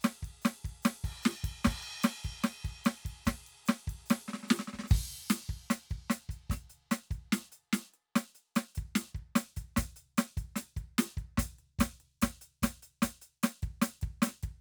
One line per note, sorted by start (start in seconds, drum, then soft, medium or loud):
0.01 snare loud
0.01 hi-hat pedal medium
0.01 ride loud
0.22 kick soft
0.22 ride soft
0.42 snare loud
0.42 hi-hat pedal medium
0.46 ride loud
0.64 kick soft
0.64 ride soft
0.82 snare loud
0.82 hi-hat pedal medium
0.82 ride loud
1.04 kick medium
1.04 ride medium
1.12 kick soft
1.22 snare loud
1.22 hi-hat pedal medium
1.44 kick medium
1.44 ride medium
1.64 kick medium
1.64 snare loud
1.64 hi-hat pedal medium
1.64 ride loud
1.83 ride soft
2.02 snare loud
2.02 hi-hat pedal medium
2.02 ride loud
2.24 kick soft
2.24 ride soft
2.44 snare loud
2.44 hi-hat pedal medium
2.44 ride medium
2.64 kick medium
2.64 ride soft
2.84 snare loud
2.84 hi-hat pedal medium
2.84 ride medium
3.05 kick soft
3.05 ride medium
3.25 kick medium
3.25 snare loud
3.25 hi-hat pedal medium
3.25 ride loud
3.46 ride soft
3.66 snare loud
3.66 hi-hat pedal medium
3.66 ride medium
3.87 kick medium
3.87 ride medium
4.06 hi-hat pedal medium
4.10 snare loud
4.10 ride loud
4.28 snare medium
4.33 snare medium
4.43 snare soft
4.47 snare soft
4.47 hi-hat pedal medium
4.50 snare loud
4.59 snare medium
4.67 snare medium
4.73 kick soft
4.73 snare soft
4.79 snare medium
4.84 snare medium
4.84 hi-hat pedal medium
4.90 kick loud
4.90 snare soft
4.90 crash loud
5.30 closed hi-hat loud
5.30 snare loud
5.49 kick medium
5.49 closed hi-hat soft
5.70 closed hi-hat loud
5.70 snare loud
5.90 closed hi-hat soft
5.90 kick medium
6.10 closed hi-hat loud
6.10 snare loud
6.29 closed hi-hat soft
6.29 kick soft
6.50 open hi-hat medium
6.50 kick medium
6.50 snare medium
6.50 hi-hat pedal soft
6.59 kick soft
6.70 closed hi-hat soft
6.91 closed hi-hat loud
6.91 snare loud
7.11 closed hi-hat soft
7.11 kick medium
7.32 closed hi-hat loud
7.32 snare loud
7.52 closed hi-hat soft
7.73 closed hi-hat loud
7.73 snare loud
7.94 closed hi-hat soft
8.15 closed hi-hat loud
8.15 snare loud
8.35 closed hi-hat soft
8.55 closed hi-hat loud
8.55 snare loud
8.75 closed hi-hat medium
8.75 kick medium
8.95 closed hi-hat loud
8.95 snare loud
9.15 kick soft
9.15 closed hi-hat soft
9.35 closed hi-hat loud
9.35 snare loud
9.56 closed hi-hat medium
9.56 kick soft
9.76 closed hi-hat loud
9.76 kick medium
9.76 snare medium
9.96 closed hi-hat soft
10.17 closed hi-hat loud
10.17 snare loud
10.37 closed hi-hat medium
10.37 kick medium
10.56 closed hi-hat loud
10.56 snare medium
10.76 kick soft
10.76 closed hi-hat medium
10.98 closed hi-hat loud
10.98 snare loud
11.17 kick medium
11.17 closed hi-hat soft
11.37 closed hi-hat loud
11.37 kick medium
11.37 snare medium
11.49 kick soft
11.59 closed hi-hat soft
11.79 closed hi-hat loud
11.79 kick medium
11.79 snare loud
12.00 closed hi-hat soft
12.22 closed hi-hat loud
12.22 kick soft
12.22 snare loud
12.41 closed hi-hat medium
12.62 closed hi-hat loud
12.62 kick soft
12.62 snare loud
12.82 closed hi-hat medium
13.02 closed hi-hat loud
13.02 kick soft
13.02 snare loud
13.22 closed hi-hat medium
13.43 closed hi-hat loud
13.43 snare loud
13.62 kick medium
13.62 closed hi-hat medium
13.82 closed hi-hat loud
13.82 snare loud
14.01 kick medium
14.01 closed hi-hat medium
14.22 closed hi-hat loud
14.22 snare loud
14.27 snare medium
14.43 kick medium
14.43 closed hi-hat medium